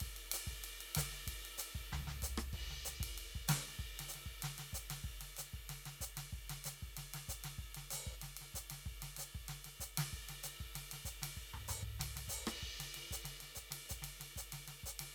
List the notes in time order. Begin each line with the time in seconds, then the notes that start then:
0.01 kick, ride
0.17 ride
0.32 hi-hat pedal, ride
0.48 kick, snare
0.65 ride
0.81 ride
0.96 kick, snare, hi-hat pedal, ride
1.12 snare
1.28 kick, ride
1.46 ride
1.59 hi-hat pedal, ride
1.76 kick
1.93 snare, floor tom
2.08 snare
2.23 kick, hi-hat pedal, ride
2.38 cross-stick
2.54 kick, ride
2.71 snare
2.86 snare, hi-hat pedal
3.01 kick, ride
3.18 ride
3.36 kick
3.49 snare, hi-hat pedal, ride
3.69 snare
3.80 kick
4.00 snare, ride
4.09 hi-hat pedal
4.15 snare, ride
4.26 kick
4.43 snare, ride
4.59 snare, ride
4.74 kick, hi-hat pedal
4.91 snare, ride
5.05 kick
5.22 snare, ride
5.37 snare, hi-hat pedal, ride
5.54 kick
5.70 snare, ride
5.86 snare, ride
6.01 kick, hi-hat pedal
6.17 snare, ride
6.33 kick
6.50 snare, ride
6.65 snare, hi-hat pedal, ride
6.83 kick
6.97 snare, ride
7.14 snare, ride
7.29 kick, hi-hat pedal
7.45 snare, ride
7.59 kick
7.75 snare, ride
7.91 snare, hi-hat pedal, ride
8.07 kick
8.22 snare, ride
8.37 ride
8.42 snare
8.55 kick, hi-hat pedal
8.71 snare, ride
8.87 kick
9.03 snare, ride
9.17 snare, hi-hat pedal, ride
9.35 kick
9.49 snare, ride
9.65 snare, ride
9.80 kick, hi-hat pedal
9.98 snare, ride
10.13 kick
10.29 snare, ride
10.44 snare, hi-hat pedal, ride
10.61 kick
10.76 snare, ride
10.92 snare, ride
11.06 kick, hi-hat pedal
11.23 snare, ride
11.37 kick
11.54 floor tom, high tom
11.69 floor tom, hi-hat pedal, high tom
11.83 kick
12.00 snare, ride
12.17 snare, ride
12.29 kick, hi-hat pedal
12.48 cross-stick, ride
12.63 kick
12.80 snare, ride
12.95 snare, ride
13.11 kick, hi-hat pedal
13.25 snare, ride
13.41 snare, ride
13.56 kick, hi-hat pedal
13.71 snare, ride
13.90 kick, hi-hat pedal
14.02 snare, ride
14.21 snare, ride
14.37 kick, hi-hat pedal
14.53 snare, ride
14.68 snare, ride
14.84 kick, hi-hat pedal
15.00 snare, ride